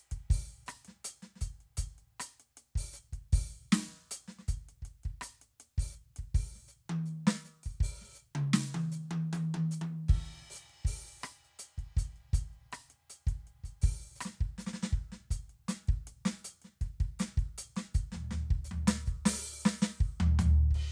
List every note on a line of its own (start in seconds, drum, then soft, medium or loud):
0.12 kick soft
0.12 closed hi-hat soft
0.31 open hi-hat medium
0.31 kick medium
0.67 cross-stick medium
0.67 closed hi-hat soft
0.67 hi-hat pedal soft
0.85 snare soft
0.85 closed hi-hat soft
1.05 closed hi-hat medium
1.23 snare soft
1.23 closed hi-hat soft
1.36 snare soft
1.42 closed hi-hat soft
1.42 kick soft
1.61 closed hi-hat soft
1.78 closed hi-hat medium
1.78 kick soft
1.99 closed hi-hat soft
2.20 closed hi-hat medium
2.20 cross-stick medium
2.40 closed hi-hat soft
2.58 closed hi-hat soft
2.76 open hi-hat medium
2.76 kick soft
2.94 closed hi-hat soft
2.94 hi-hat pedal medium
3.13 kick soft
3.13 closed hi-hat soft
3.33 open hi-hat medium
3.33 kick medium
3.73 snare loud
3.73 hi-hat pedal soft
3.94 closed hi-hat soft
4.12 closed hi-hat medium
4.29 snare soft
4.33 closed hi-hat soft
4.39 snare soft
4.49 closed hi-hat medium
4.49 kick soft
4.69 closed hi-hat soft
4.83 kick soft
4.83 closed hi-hat soft
5.04 kick soft
5.04 closed hi-hat soft
5.22 closed hi-hat medium
5.22 cross-stick medium
5.42 closed hi-hat soft
5.61 closed hi-hat soft
5.78 open hi-hat medium
5.78 kick soft
5.93 hi-hat pedal soft
6.17 kick soft
6.17 closed hi-hat soft
6.35 open hi-hat medium
6.35 kick medium
6.56 snare soft
6.69 hi-hat pedal soft
6.90 high tom medium
7.06 hi-hat pedal soft
7.28 snare medium
7.45 snare soft
7.45 hi-hat pedal soft
7.64 kick soft
7.64 open hi-hat soft
7.81 open hi-hat medium
7.81 kick soft
8.02 snare soft
8.15 hi-hat pedal soft
8.36 mid tom loud
8.54 snare medium
8.54 hi-hat pedal soft
8.75 high tom medium
8.93 hi-hat pedal medium
9.12 high tom medium
9.34 hi-hat pedal soft
9.34 high tom medium
9.55 high tom medium
9.72 hi-hat pedal medium
9.82 high tom medium
10.09 kick medium
10.09 crash soft
10.51 open hi-hat medium
10.55 hi-hat pedal medium
10.70 closed hi-hat soft
10.85 open hi-hat medium
10.85 kick soft
11.21 cross-stick medium
11.21 hi-hat pedal soft
11.26 closed hi-hat soft
11.45 closed hi-hat soft
11.60 closed hi-hat medium
11.78 kick soft
11.78 closed hi-hat soft
11.97 closed hi-hat soft
11.97 kick soft
12.17 closed hi-hat soft
12.34 closed hi-hat medium
12.34 kick medium
12.54 closed hi-hat soft
12.73 cross-stick medium
12.73 closed hi-hat soft
12.91 closed hi-hat soft
13.10 closed hi-hat medium
13.28 kick soft
13.28 closed hi-hat soft
13.48 closed hi-hat soft
13.64 closed hi-hat soft
13.64 kick soft
13.82 open hi-hat medium
13.82 kick medium
14.16 hi-hat pedal soft
14.21 closed hi-hat medium
14.21 cross-stick medium
14.26 snare soft
14.41 kick soft
14.59 snare soft
14.59 hi-hat pedal medium
14.67 snare soft
14.74 snare soft
14.83 snare medium
14.93 kick soft
15.13 snare soft
15.31 closed hi-hat medium
15.31 kick soft
15.50 closed hi-hat soft
15.69 closed hi-hat medium
15.69 snare medium
15.88 kick medium
15.88 closed hi-hat soft
16.08 closed hi-hat soft
16.26 snare medium
16.26 closed hi-hat soft
16.45 closed hi-hat medium
16.62 snare soft
16.62 closed hi-hat soft
16.82 kick soft
16.82 snare soft
16.82 closed hi-hat soft
17.01 kick soft
17.01 closed hi-hat soft
17.20 closed hi-hat medium
17.20 snare medium
17.38 kick soft
17.38 closed hi-hat soft
17.59 closed hi-hat medium
17.77 snare medium
17.77 closed hi-hat soft
17.95 closed hi-hat soft
17.95 kick soft
18.13 snare soft
18.13 floor tom soft
18.32 snare soft
18.32 floor tom medium
18.51 kick soft
18.65 hi-hat pedal medium
18.72 floor tom medium
18.88 snare medium
18.88 closed hi-hat loud
19.07 kick soft
19.07 hi-hat pedal soft
19.26 open hi-hat loud
19.26 snare medium
19.66 snare medium
19.83 snare medium
20.01 kick medium
20.21 floor tom loud
20.40 floor tom loud
20.40 hi-hat pedal medium
20.71 kick soft
20.71 ride medium